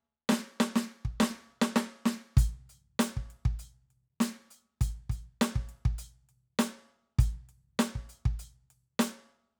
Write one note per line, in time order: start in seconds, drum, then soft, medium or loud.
0.29 snare loud
0.32 snare loud
0.60 snare loud
0.76 snare loud
1.05 kick medium
1.20 snare loud
1.23 snare loud
1.62 snare loud
1.76 snare loud
2.06 snare loud
2.37 closed hi-hat loud
2.37 kick loud
2.69 closed hi-hat soft
3.00 closed hi-hat loud
3.00 snare loud
3.17 kick medium
3.30 closed hi-hat soft
3.45 kick medium
3.59 closed hi-hat medium
3.91 closed hi-hat soft
4.21 closed hi-hat loud
4.21 snare loud
4.51 closed hi-hat soft
4.81 closed hi-hat medium
4.81 kick medium
5.10 closed hi-hat medium
5.10 kick medium
5.41 closed hi-hat loud
5.41 snare loud
5.56 kick medium
5.69 closed hi-hat soft
5.85 kick medium
5.99 closed hi-hat medium
6.29 closed hi-hat soft
6.59 closed hi-hat loud
6.59 snare loud
7.19 closed hi-hat medium
7.19 kick loud
7.49 closed hi-hat soft
7.79 closed hi-hat loud
7.79 snare loud
7.96 kick soft
8.09 closed hi-hat soft
8.26 kick medium
8.39 closed hi-hat medium
8.71 closed hi-hat soft
9.00 closed hi-hat loud
9.00 snare loud